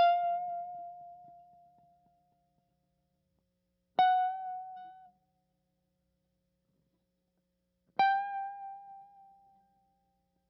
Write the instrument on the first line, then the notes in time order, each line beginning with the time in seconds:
electric guitar
0.00 F5
3.99 F#5
8.01 G5